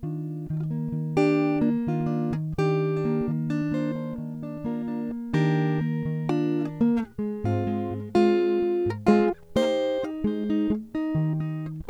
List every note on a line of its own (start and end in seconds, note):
0.05 0.47 D#3
0.05 0.51 D4
0.05 0.50 F4
0.52 0.94 D#3
0.72 1.58 A#3
0.94 1.81 D#3
1.18 1.75 D4
1.18 1.63 G4
1.63 2.39 A#3
1.89 2.34 D#3
1.89 2.05 D4
1.89 2.40 F4
2.08 2.42 D4
2.34 2.57 D#3
2.60 3.25 D#3
2.60 3.02 D4
2.60 3.30 G4
3.03 3.34 D4
3.07 3.65 A#3
3.30 4.17 D#3
3.51 3.95 D4
3.73 4.60 A#3
3.73 3.92 F4
3.73 4.19 C5
3.97 4.37 D4
4.20 5.13 D#3
4.44 4.85 D4
4.66 5.83 A#3
4.66 5.10 F4
4.66 5.18 A#4
4.89 5.17 D4
5.35 6.07 D#3
5.35 5.84 D4
5.35 5.85 G4
5.35 6.83 A#4
5.83 6.71 A#3
6.07 6.96 D#3
6.30 6.72 D4
6.30 6.73 F4
6.82 7.07 A#3
7.20 7.69 G#3
7.46 7.92 G#2
7.46 8.05 C4
7.46 7.98 F4
7.69 8.12 G#3
7.92 8.85 G#2
8.16 8.62 G#3
8.16 8.98 C4
8.16 9.00 F4
8.65 8.98 G#3
8.87 9.06 G#2
9.08 9.36 G#3
9.08 9.33 C4
9.08 9.36 F4
9.57 9.69 A#3
9.57 10.01 D#4
9.57 10.16 G4
9.57 10.10 C5
9.69 9.83 A3
10.05 10.47 D#4
10.26 10.72 G#3
10.26 10.75 C5
10.51 10.79 D#4
10.72 10.84 A3
10.84 10.91 A3
10.96 11.36 D#4
11.16 11.85 D#3
11.16 11.31 G4
11.16 11.37 C5
11.42 11.72 D#4